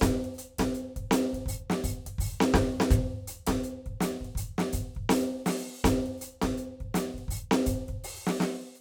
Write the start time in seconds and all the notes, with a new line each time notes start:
0.01 closed hi-hat, kick, snare, hi-hat pedal
0.25 closed hi-hat
0.34 hi-hat pedal
0.39 closed hi-hat
0.59 kick, snare, closed hi-hat
0.75 closed hi-hat
0.96 kick, closed hi-hat
1.11 closed hi-hat, snare
1.33 kick, closed hi-hat
1.46 open hi-hat, kick
1.70 snare
1.84 open hi-hat, kick
2.06 kick, closed hi-hat
2.19 open hi-hat, kick, hi-hat pedal
2.41 snare
2.54 kick, snare
2.80 snare
2.91 open hi-hat, kick, cross-stick, hi-hat pedal
3.28 closed hi-hat
3.47 kick, snare, closed hi-hat
3.54 snare
3.64 closed hi-hat
3.86 kick, closed hi-hat
4.01 closed hi-hat, snare
4.21 kick, closed hi-hat
4.36 closed hi-hat, kick
4.59 snare
4.73 closed hi-hat, kick
4.95 kick, closed hi-hat
5.10 open hi-hat, snare, hi-hat pedal
5.39 kick
5.46 open hi-hat, snare
5.81 closed hi-hat, kick, snare, hi-hat pedal
6.06 closed hi-hat
6.18 closed hi-hat, hi-hat pedal
6.42 kick, snare, closed hi-hat
6.58 closed hi-hat
6.81 kick, closed hi-hat
6.95 closed hi-hat, snare
7.14 kick
7.18 closed hi-hat
7.29 open hi-hat, kick
7.34 hi-hat pedal
7.52 snare
7.60 snare
7.67 closed hi-hat, kick
7.89 kick, closed hi-hat
8.04 open hi-hat
8.27 snare
8.41 snare
8.75 hi-hat pedal